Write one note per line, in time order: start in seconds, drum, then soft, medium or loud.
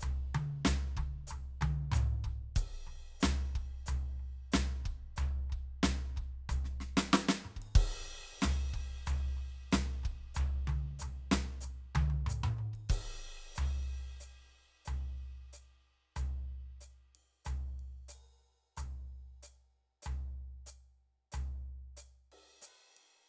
0.01 floor tom loud
0.01 hi-hat pedal medium
0.35 floor tom medium
0.35 high tom loud
0.65 snare loud
0.65 floor tom loud
0.65 hi-hat pedal medium
0.97 kick medium
0.97 floor tom medium
0.97 high tom medium
1.28 floor tom medium
1.28 hi-hat pedal medium
1.62 floor tom loud
1.62 high tom loud
1.92 floor tom loud
1.92 hi-hat pedal medium
1.92 mid tom loud
2.24 kick soft
2.24 floor tom medium
2.56 kick medium
2.56 hi-hat pedal medium
2.56 crash soft
2.87 floor tom soft
3.21 snare loud
3.21 floor tom loud
3.21 hi-hat pedal medium
3.31 floor tom soft
3.56 kick soft
3.56 floor tom soft
3.87 floor tom loud
3.87 hi-hat pedal medium
4.20 floor tom soft
4.52 snare loud
4.52 floor tom loud
4.52 hi-hat pedal medium
4.85 kick medium
4.85 floor tom soft
5.17 floor tom loud
5.17 hi-hat pedal medium
5.50 kick soft
5.50 floor tom soft
5.83 snare loud
5.83 floor tom loud
5.83 hi-hat pedal medium
6.17 kick soft
6.17 floor tom soft
6.49 kick soft
6.49 floor tom loud
6.49 hi-hat pedal medium
6.65 snare soft
6.81 snare soft
6.97 snare loud
7.12 snare loud
7.12 hi-hat pedal medium
7.29 snare loud
7.45 mid tom medium
7.57 kick soft
7.62 crash soft
7.76 kick loud
7.76 crash medium
8.42 snare loud
8.42 floor tom loud
8.42 hi-hat pedal medium
8.74 kick soft
8.74 floor tom soft
9.07 floor tom loud
9.07 hi-hat pedal medium
9.37 floor tom soft
9.72 snare loud
9.72 floor tom loud
9.72 hi-hat pedal medium
10.04 kick medium
10.04 floor tom soft
10.35 floor tom loud
10.35 hi-hat pedal medium
10.68 floor tom medium
10.68 high tom loud
11.00 floor tom medium
11.00 hi-hat pedal medium
11.32 snare loud
11.32 floor tom medium
11.61 floor tom soft
11.61 hi-hat pedal medium
11.95 floor tom loud
11.95 high tom loud
12.10 high tom soft
12.27 hi-hat pedal medium
12.27 mid tom loud
12.44 mid tom loud
12.59 floor tom soft
12.74 kick soft
12.74 crash soft
12.90 kick medium
12.90 hi-hat pedal medium
12.90 crash medium
13.23 floor tom soft
13.56 floor tom loud
13.56 hi-hat pedal medium
13.66 floor tom soft
14.21 hi-hat pedal medium
14.85 floor tom medium
14.85 hi-hat pedal medium
15.53 hi-hat pedal medium
16.16 floor tom loud
16.16 hi-hat pedal medium
16.81 hi-hat pedal medium
17.15 ride soft
17.45 floor tom medium
17.45 hi-hat pedal medium
17.80 ride soft
18.09 hi-hat pedal medium
18.09 crash soft
18.77 floor tom medium
18.77 hi-hat pedal medium
19.43 hi-hat pedal medium
20.03 floor tom medium
20.03 hi-hat pedal medium
20.67 hi-hat pedal medium
21.32 floor tom medium
21.32 hi-hat pedal medium
21.97 hi-hat pedal medium
22.32 crash soft
22.62 hi-hat pedal medium
22.62 crash soft
22.97 ride soft